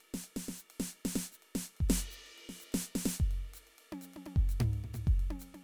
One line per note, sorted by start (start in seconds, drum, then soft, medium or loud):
0.01 ride soft
0.14 snare medium
0.24 ride medium
0.37 snare medium
0.37 ride soft
0.48 snare medium
0.48 ride medium
0.57 hi-hat pedal medium
0.70 ride medium
0.80 snare medium
0.80 ride medium
0.93 ride soft
1.05 snare medium
1.16 snare medium
1.16 ride medium
1.29 hi-hat pedal medium
1.29 ride medium
1.43 ride medium
1.55 snare medium
1.66 ride medium
1.77 kick medium
1.77 ride soft
1.89 snare loud
1.89 ride medium
2.11 hi-hat pedal medium
2.11 ride soft
2.27 ride soft
2.38 ride medium
2.49 snare soft
2.60 hi-hat pedal medium
2.60 ride medium
2.73 snare medium
2.73 ride medium
2.84 ride soft
2.96 snare medium
3.06 snare medium
3.06 hi-hat pedal medium
3.06 ride medium
3.20 kick medium
3.20 ride medium
3.30 hi-hat pedal soft
3.30 ride medium
3.54 hi-hat pedal medium
3.54 ride medium
3.67 ride soft
3.79 ride medium
3.93 high tom medium
4.01 hi-hat pedal medium
4.01 ride medium
4.14 high tom medium
4.14 ride medium
4.26 high tom medium
4.26 ride medium
4.36 kick medium
4.49 hi-hat pedal medium
4.49 ride medium
4.60 floor tom loud
4.60 ride medium
4.74 ride medium
4.84 floor tom soft
4.94 floor tom medium
4.94 hi-hat pedal medium
4.94 ride medium
5.07 kick medium
5.07 ride soft
5.20 ride medium
5.31 high tom medium
5.40 hi-hat pedal medium
5.40 ride medium
5.54 high tom soft
5.54 ride medium